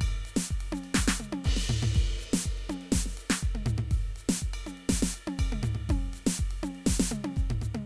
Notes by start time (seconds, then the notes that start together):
0.01 kick, hi-hat pedal, ride bell
0.26 hi-hat pedal, ride
0.37 snare
0.49 kick, hi-hat pedal, ride
0.61 ride
0.73 hi-hat pedal, high tom
0.84 ride bell
0.95 kick, snare, hi-hat pedal, ride bell
1.08 snare
1.20 hi-hat pedal, mid tom
1.33 high tom
1.44 kick, hi-hat pedal, ride
1.57 snare
1.70 floor tom, hi-hat pedal
1.83 floor tom
1.95 kick, hi-hat pedal, ride
2.21 hi-hat pedal, ride
2.34 snare
2.44 kick, hi-hat pedal, ride
2.58 ride
2.70 hi-hat pedal, high tom
2.82 ride
2.93 kick, snare, hi-hat pedal, ride
3.06 snare
3.18 hi-hat pedal, ride
3.31 snare
3.42 kick, hi-hat pedal, ride bell
3.56 mid tom
3.67 floor tom, hi-hat pedal
3.79 floor tom
3.91 kick, hi-hat pedal, ride
4.17 hi-hat pedal, ride
4.30 snare
4.42 kick, hi-hat pedal, ride
4.54 ride bell
4.67 hi-hat pedal, high tom
4.78 ride
4.90 kick, snare, hi-hat pedal, ride bell
5.03 snare
5.15 hi-hat pedal, ride
5.28 high tom
5.39 kick, hi-hat pedal, ride bell
5.53 mid tom
5.64 floor tom, hi-hat pedal
5.75 floor tom
5.90 kick, hi-hat pedal, high tom, ride
6.14 hi-hat pedal, ride
6.27 snare
6.39 kick, hi-hat pedal, ride
6.51 ride
6.64 hi-hat pedal, high tom
6.76 ride
6.87 kick, snare, hi-hat pedal, ride
7.00 snare
7.12 hi-hat pedal, mid tom
7.25 high tom
7.37 kick, hi-hat pedal, ride bell, floor tom
7.51 floor tom
7.62 floor tom, hi-hat pedal
7.75 mid tom